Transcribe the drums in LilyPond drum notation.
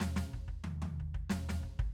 \new DrumStaff \drummode { \time 4/4 \tempo 4 = 122 \tuplet 3/2 { <tomfh sn>8 <sn tomfh>8 bd8 bd8 <tommh tomfh>8 <tommh tomfh>8 bd8 bd8 <sn tomfh>8 <sn tomfh>8 bd8 bd8 } | }